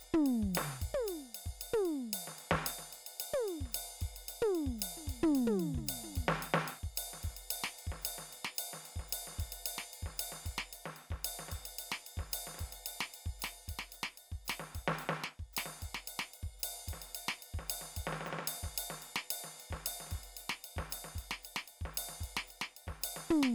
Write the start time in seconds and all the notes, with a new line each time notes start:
0.01 hi-hat pedal
0.14 floor tom
0.26 ride
0.43 kick
0.54 snare, hi-hat pedal, ride bell
0.82 kick, ride
0.94 high tom
1.07 hi-hat pedal, ride
1.35 ride bell
1.46 kick
1.61 hi-hat pedal, ride
1.74 mid tom
1.86 ride
2.14 hi-hat pedal, ride bell
2.28 snare
2.39 ride
2.52 kick, snare
2.66 hi-hat pedal, ride bell
2.79 snare
2.93 ride
3.07 ride
3.20 hi-hat pedal, ride bell
3.34 high tom
3.48 ride
3.61 kick
3.66 snare
3.73 hi-hat pedal, ride bell
4.01 kick, ride
4.17 ride
4.29 hi-hat pedal, ride bell
4.42 mid tom
4.55 ride
4.67 kick
4.79 hi-hat pedal, ride bell
4.97 floor tom
5.08 kick, ride
5.23 floor tom
5.35 hi-hat pedal, ride
5.47 mid tom
5.60 ride
5.75 kick, floor tom
5.87 hi-hat pedal, ride
6.04 floor tom
6.16 kick, ride
6.23 kick
6.29 snare
6.43 hi-hat pedal, ride
6.54 snare
6.68 ride
6.84 kick
6.96 hi-hat pedal, ride bell
7.14 snare
7.23 kick, snare, ride
7.31 snare
7.37 ride
7.51 hi-hat pedal, ride bell
7.64 snare
7.79 ride
7.87 kick
7.92 snare
8.02 hi-hat pedal, ride
8.19 snare
8.33 ride
8.45 snare
8.56 hi-hat pedal, ride bell
8.74 snare
8.86 ride
8.96 kick, snare
9.08 hi-hat pedal
9.13 ride bell
9.28 snare
9.33 snare
9.39 kick, snare, ride
9.44 snare
9.53 ride
9.66 hi-hat pedal, ride bell
9.79 snare
9.94 ride
10.03 kick, snare
10.18 hi-hat pedal, ride bell
10.32 snare
10.46 kick, ride
10.58 snare
10.73 hi-hat pedal, ride
10.86 snare
10.97 ride
11.11 kick, snare
11.24 hi-hat pedal, ride bell
11.40 snare
11.49 kick, snare, ride
11.66 ride
11.79 hi-hat pedal, ride bell
11.92 snare
12.07 ride
12.18 kick, snare
12.32 hi-hat pedal, ride bell
12.48 snare
12.55 snare
12.59 kick, snare, ride
12.73 ride
12.86 hi-hat pedal, ride bell
13.01 snare
13.14 ride
13.26 kick
13.40 hi-hat pedal, ride bell
13.44 snare
13.69 kick, ride
13.79 snare
13.93 hi-hat pedal, ride bell
14.04 snare
14.18 ride
14.32 kick
14.46 hi-hat pedal, ride bell
14.50 snare
14.60 snare
14.75 kick, ride
14.88 snare
14.99 hi-hat pedal, ride bell
15.09 snare
15.24 snare
15.40 kick
15.53 hi-hat pedal, ride bell
15.58 snare
15.66 snare
15.82 kick, ride
15.95 snare
16.07 hi-hat pedal, ride bell
16.20 snare
16.34 ride
16.43 kick
16.60 hi-hat pedal
16.64 ride bell
16.88 kick, ride
16.94 snare
17.02 ride
17.15 hi-hat pedal, ride
17.29 snare
17.43 ride
17.54 kick
17.59 snare
17.69 hi-hat pedal, ride bell
17.82 snare
17.97 kick, ride
18.07 snare
18.13 snare
18.21 snare
18.26 snare, hi-hat pedal
18.32 snare
18.39 snare
18.48 ride
18.64 kick, snare
18.78 hi-hat pedal, ride bell
18.91 snare
19.03 ride
19.16 snare
19.31 hi-hat pedal, ride bell
19.44 snare
19.60 ride
19.71 kick, snare
19.86 hi-hat pedal, ride bell
20.01 snare
20.07 snare
20.11 kick, snare, ride bell
20.15 snare
20.24 ride bell
20.37 hi-hat pedal, ride bell
20.50 snare
20.65 ride
20.77 kick, snare
20.91 hi-hat pedal, ride
21.05 snare
21.16 kick, ride
21.31 snare
21.43 hi-hat pedal, ride
21.57 snare
21.68 ride
21.82 kick
21.86 snare
21.94 hi-hat pedal, ride bell
22.09 snare
22.21 kick, ride
22.37 snare
22.48 hi-hat pedal, ride
22.62 snare
22.77 ride
22.88 kick, snare
23.02 hi-hat pedal, ride bell
23.17 snare
23.30 floor tom
23.43 snare